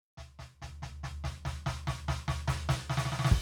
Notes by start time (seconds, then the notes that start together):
0.17 snare, floor tom
0.39 snare, floor tom
0.62 snare, floor tom
0.82 snare, floor tom
1.03 snare, floor tom
1.24 snare, floor tom
1.45 snare, floor tom
1.66 snare, floor tom
1.87 snare, floor tom
2.08 snare, floor tom
2.28 snare, floor tom
2.47 snare, floor tom
2.69 snare, floor tom
2.90 snare
2.97 snare
3.05 snare
3.12 snare
3.19 snare
3.25 snare
3.31 kick, crash